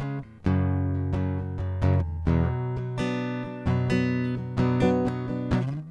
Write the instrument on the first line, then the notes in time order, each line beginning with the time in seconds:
acoustic guitar
0.00 C#3 G#3 C#4
0.22 E2 A2
0.46 F#2 C#3
0.63 F#3
0.96 F#2
1.14 F#2 C#3 F#3
1.40 F#2 C#3 F#3
1.59 F#2 C#3 F#3
1.83 F#2 C#3
2.02 E2
2.28 E2 B2 F#3
2.78 B2 F#3
2.99 B2 F#3 B3 D4
3.45 B2 F#3 B3
3.64 B2 D4
3.68 F#3 B3
3.91 B2 F#3 B3
4.36 B2 F#3 B3
4.59 B2 F#3 B3
4.63 D4
4.81 B2 F#3 B3 D4
5.06 B2 F#3 B3
5.29 B2 F#3 B3 D4
5.54 F#3 D4